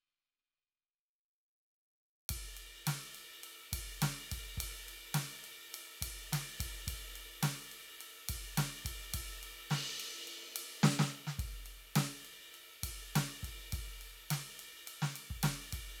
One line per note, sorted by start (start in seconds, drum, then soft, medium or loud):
2.29 kick medium
2.29 ride loud
2.57 ride medium
2.87 snare medium
2.87 ride loud
3.15 ride medium
3.43 ride medium
3.73 kick medium
3.73 ride loud
4.02 snare medium
4.02 ride loud
4.31 kick medium
4.31 ride loud
4.57 kick medium
4.57 ride loud
4.88 ride medium
5.14 snare medium
5.14 ride loud
5.44 ride medium
5.74 ride medium
6.01 kick medium
6.01 ride loud
6.32 snare medium
6.32 ride loud
6.60 kick medium
6.60 ride loud
6.87 kick medium
6.87 ride loud
7.15 ride medium
7.43 snare medium
7.43 ride loud
7.71 ride medium
8.01 ride medium
8.29 kick medium
8.29 ride loud
8.57 snare medium
8.57 ride loud
8.85 kick medium
8.85 ride loud
9.14 kick medium
9.14 ride loud
9.43 ride medium
9.70 snare medium
9.70 ride loud
10.00 ride medium
10.27 ride medium
10.56 ride loud
10.83 snare loud
10.99 snare loud
11.27 snare medium
11.39 kick medium
11.39 ride medium
11.66 ride medium
11.95 snare loud
11.95 ride loud
12.25 ride soft
12.54 ride soft
12.83 kick medium
12.83 ride loud
13.15 snare loud
13.15 ride loud
13.43 kick medium
13.43 ride medium
13.72 kick medium
13.72 ride medium
14.01 ride medium
14.30 snare medium
14.30 ride loud
14.59 ride medium
14.87 ride medium
15.02 snare medium
15.16 ride medium
15.30 kick medium
15.43 snare medium
15.43 ride loud
15.73 kick medium
15.73 ride medium